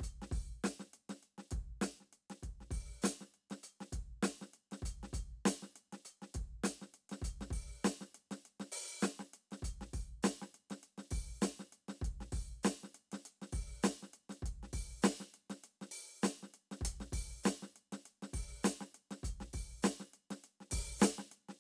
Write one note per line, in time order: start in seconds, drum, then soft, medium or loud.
0.01 closed hi-hat soft
0.01 kick soft
0.23 snare soft
0.32 kick medium
0.32 open hi-hat medium
0.65 open hi-hat medium
0.65 snare medium
0.65 hi-hat pedal medium
0.80 snare soft
0.94 closed hi-hat soft
1.10 snare soft
1.10 closed hi-hat soft
1.23 closed hi-hat soft
1.39 snare soft
1.52 kick medium
1.52 closed hi-hat medium
1.82 closed hi-hat medium
1.82 snare medium
2.01 snare soft
2.13 closed hi-hat soft
2.31 snare soft
2.31 closed hi-hat soft
2.43 kick soft
2.43 closed hi-hat soft
2.61 snare soft
2.71 kick medium
2.71 open hi-hat medium
3.03 closed hi-hat loud
3.03 snare loud
3.03 hi-hat pedal medium
3.21 snare soft
3.35 closed hi-hat soft
3.51 snare soft
3.51 closed hi-hat soft
3.64 closed hi-hat medium
3.81 snare soft
3.93 kick medium
3.93 closed hi-hat medium
4.23 closed hi-hat medium
4.23 snare medium
4.42 snare soft
4.54 closed hi-hat soft
4.72 snare soft
4.72 closed hi-hat soft
4.83 closed hi-hat medium
4.83 kick medium
5.04 snare soft
5.14 closed hi-hat medium
5.14 kick medium
5.46 closed hi-hat loud
5.46 snare loud
5.46 hi-hat pedal medium
5.63 snare soft
5.76 closed hi-hat soft
5.93 snare soft
5.93 closed hi-hat soft
6.06 closed hi-hat soft
6.23 snare soft
6.35 kick medium
6.35 closed hi-hat medium
6.45 kick soft
6.64 closed hi-hat medium
6.64 snare medium
6.82 snare soft
6.95 closed hi-hat soft
7.10 snare soft
7.10 closed hi-hat soft
7.22 closed hi-hat medium
7.22 kick medium
7.42 snare soft
7.51 kick medium
7.51 open hi-hat medium
7.85 closed hi-hat medium
7.85 snare loud
7.85 hi-hat pedal medium
8.02 snare soft
8.15 closed hi-hat soft
8.32 snare medium
8.32 closed hi-hat soft
8.46 closed hi-hat soft
8.61 snare soft
8.72 open hi-hat loud
9.03 closed hi-hat medium
9.03 snare medium
9.03 hi-hat pedal medium
9.20 snare soft
9.34 closed hi-hat soft
9.52 snare soft
9.52 closed hi-hat soft
9.63 closed hi-hat medium
9.63 kick medium
9.82 snare soft
9.94 kick medium
9.94 open hi-hat medium
10.23 closed hi-hat medium
10.23 snare loud
10.23 hi-hat pedal medium
10.42 snare soft
10.55 closed hi-hat soft
10.71 snare soft
10.71 closed hi-hat soft
10.84 closed hi-hat soft
10.98 snare soft
11.11 kick medium
11.11 open hi-hat medium
11.42 closed hi-hat medium
11.42 snare loud
11.42 hi-hat pedal medium
11.60 snare soft
11.73 closed hi-hat soft
11.89 snare soft
12.02 kick medium
12.02 closed hi-hat medium
12.21 snare soft
12.33 kick medium
12.33 open hi-hat medium
12.64 closed hi-hat medium
12.64 snare loud
12.64 hi-hat pedal medium
12.84 snare soft
12.95 closed hi-hat soft
13.12 snare medium
13.12 closed hi-hat soft
13.26 closed hi-hat medium
13.42 snare soft
13.53 kick medium
13.53 open hi-hat medium
13.84 closed hi-hat medium
13.84 snare loud
13.84 hi-hat pedal medium
14.03 snare soft
14.14 closed hi-hat soft
14.30 snare soft
14.30 closed hi-hat soft
14.43 kick medium
14.43 closed hi-hat medium
14.64 snare soft
14.74 kick medium
14.74 open hi-hat medium
15.03 closed hi-hat medium
15.03 snare loud
15.03 hi-hat pedal medium
15.21 snare soft
15.35 closed hi-hat soft
15.51 snare soft
15.51 closed hi-hat soft
15.64 closed hi-hat soft
15.82 snare soft
15.92 open hi-hat medium
16.23 closed hi-hat medium
16.23 snare loud
16.23 hi-hat pedal medium
16.43 snare soft
16.55 closed hi-hat soft
16.72 snare soft
16.72 closed hi-hat soft
16.82 kick medium
16.82 closed hi-hat loud
17.01 snare soft
17.13 kick medium
17.13 open hi-hat medium
17.44 closed hi-hat medium
17.44 snare loud
17.44 hi-hat pedal medium
17.63 snare soft
17.77 closed hi-hat soft
17.93 snare soft
17.93 closed hi-hat soft
18.06 closed hi-hat soft
18.23 snare soft
18.34 kick medium
18.34 open hi-hat medium
18.64 closed hi-hat loud
18.64 snare loud
18.64 hi-hat pedal medium
18.81 snare soft
18.95 closed hi-hat soft
19.12 snare soft
19.12 closed hi-hat soft
19.24 closed hi-hat medium
19.24 kick medium
19.41 snare soft
19.54 kick soft
19.54 open hi-hat medium
19.83 closed hi-hat medium
19.83 snare loud
19.83 hi-hat pedal medium
20.00 snare soft
20.14 closed hi-hat soft
20.31 snare medium
20.31 closed hi-hat soft
20.45 closed hi-hat soft
20.61 snare soft
20.71 kick medium
20.71 snare soft
20.71 open hi-hat loud
21.00 closed hi-hat loud
21.00 snare loud
21.00 hi-hat pedal medium
21.19 snare soft
21.32 closed hi-hat soft
21.49 snare soft
21.49 closed hi-hat soft